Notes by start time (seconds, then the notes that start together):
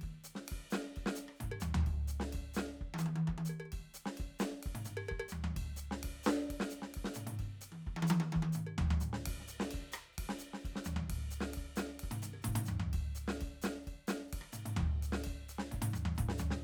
0.01 kick, mid tom, ride bell
0.24 hi-hat pedal, ride
0.35 snare
0.45 hi-hat pedal, ride
0.51 kick
0.70 snare, hi-hat pedal
0.96 kick, ride bell
1.06 snare
1.15 hi-hat pedal, ride
1.28 cross-stick
1.36 hi-hat pedal
1.40 kick, mid tom
1.51 percussion
1.60 floor tom, hi-hat pedal
1.74 floor tom
1.80 floor tom
1.86 kick, ride bell
1.93 kick
2.07 hi-hat pedal, ride
2.20 snare
2.29 hi-hat pedal, ride bell
2.34 kick
2.42 kick
2.54 snare, hi-hat pedal
2.81 kick
2.88 kick
2.94 high tom
2.98 hi-hat pedal, high tom
3.06 high tom
3.16 high tom
3.27 kick, high tom
3.34 kick, high tom
3.45 hi-hat pedal
3.49 percussion
3.60 percussion
3.65 percussion
3.72 kick, ride bell
3.94 hi-hat pedal, ride
4.05 snare
4.14 hi-hat pedal, ride bell
4.20 kick
4.26 kick
4.27 kick
4.39 snare, hi-hat pedal
4.60 hi-hat pedal, ride
4.66 kick
4.72 kick, mid tom
4.85 hi-hat pedal, mid tom
4.97 percussion
5.05 hi-hat pedal, percussion
5.11 kick
5.17 kick, percussion
5.28 floor tom, hi-hat pedal
5.44 floor tom
5.56 kick, ride bell
5.65 kick
5.76 hi-hat pedal
5.81 ride
5.91 snare
5.98 hi-hat pedal
6.03 kick, ride
6.23 snare, hi-hat pedal
6.44 hi-hat pedal
6.50 kick, ride
6.60 snare
6.70 hi-hat pedal, ride
6.82 snare
6.94 kick, ride
7.04 snare
7.14 hi-hat pedal, mid tom
7.27 mid tom
7.39 kick, ride bell
7.61 hi-hat pedal, ride
7.72 high tom
7.86 kick, high tom
7.96 high tom
8.02 high tom
8.07 hi-hat pedal, high tom
8.20 high tom
8.32 kick, high tom
8.42 kick, high tom
8.52 hi-hat pedal, mid tom
8.66 percussion
8.78 kick, floor tom
8.90 floor tom
9.00 floor tom, hi-hat pedal
9.13 snare
9.25 kick, ride
9.34 kick
9.37 kick, snare
9.48 hi-hat pedal, ride
9.60 snare
9.67 hi-hat pedal, ride bell
9.74 kick
9.92 cross-stick, hi-hat pedal
10.12 hi-hat pedal
10.18 kick, ride
10.26 kick, snare
10.39 hi-hat pedal, ride
10.53 snare
10.60 hi-hat pedal
10.65 kick, ride bell
10.75 snare
10.84 floor tom, hi-hat pedal
10.96 floor tom
11.09 kick, ride
11.18 kick
11.30 hi-hat pedal, ride
11.40 snare
11.50 hi-hat pedal, ride
11.57 kick
11.76 snare, hi-hat pedal
11.99 kick, ride
12.09 kick, mid tom
12.22 hi-hat pedal, mid tom
12.33 percussion
12.42 hi-hat pedal, mid tom
12.47 kick
12.55 mid tom
12.65 floor tom, hi-hat pedal
12.79 floor tom
12.93 kick, ride bell
13.03 kick
13.15 hi-hat pedal, ride
13.28 snare
13.41 kick, ride bell
13.50 kick
13.62 snare, hi-hat pedal
13.82 hi-hat pedal
13.87 kick, ride bell
14.07 snare, hi-hat pedal
14.28 hi-hat pedal
14.33 kick, ride
14.41 kick, cross-stick
14.52 kick, hi-hat pedal, mid tom
14.65 mid tom
14.76 kick, floor tom
14.88 kick
15.02 hi-hat pedal, ride
15.12 snare
15.24 kick, ride bell
15.48 hi-hat pedal, ride
15.58 snare
15.71 kick, mid tom
15.82 kick, mid tom
15.92 floor tom, hi-hat pedal, ride
16.05 floor tom
16.15 hi-hat pedal, mid tom
16.19 kick
16.29 snare
16.38 floor tom, hi-hat pedal
16.50 snare